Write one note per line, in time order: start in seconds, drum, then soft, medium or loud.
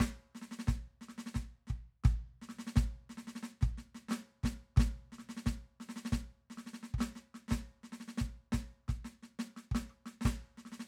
0.03 snare loud
0.35 snare soft
0.41 snare soft
0.51 snare soft
0.59 snare soft
0.67 kick medium
0.67 snare medium
1.01 snare soft
1.08 snare soft
1.18 snare soft
1.26 snare soft
1.34 kick soft
1.34 snare medium
1.67 kick soft
1.67 snare soft
2.04 kick loud
2.04 snare soft
2.42 snare soft
2.49 snare soft
2.59 snare soft
2.67 snare soft
2.76 kick medium
2.76 snare medium
3.09 snare soft
3.17 snare soft
3.27 snare soft
3.35 snare soft
3.43 snare medium
3.61 kick medium
3.61 snare soft
3.77 snare soft
3.95 snare soft
4.08 snare soft
4.11 snare medium
4.43 kick medium
4.43 snare soft
4.45 snare medium
4.76 kick loud
4.76 snare soft
4.79 snare medium
5.12 snare soft
5.18 snare soft
5.29 snare soft
5.37 snare soft
5.46 kick medium
5.46 snare medium
5.80 snare soft
5.89 snare soft
5.96 snare soft
6.05 snare medium
6.12 kick medium
6.12 snare medium
6.50 snare soft
6.57 snare soft
6.66 snare soft
6.73 snare soft
6.83 snare soft
6.94 kick medium
6.98 snare soft
7.00 snare medium
7.15 snare soft
7.34 snare soft
7.48 snare soft
7.51 kick medium
7.51 snare medium
7.83 snare soft
7.92 snare soft
8.00 snare soft
8.08 snare soft
8.17 kick soft
8.17 snare medium
8.52 kick medium
8.52 snare medium
8.88 kick medium
8.88 snare soft
9.04 snare soft
9.23 snare soft
9.39 snare medium
9.56 snare soft
9.71 kick medium
9.71 snare soft
9.75 snare medium
9.89 cross-stick soft
10.06 snare soft
10.21 snare medium
10.25 kick medium
10.25 snare medium
10.57 snare soft
10.65 snare soft
10.72 snare soft
10.79 snare soft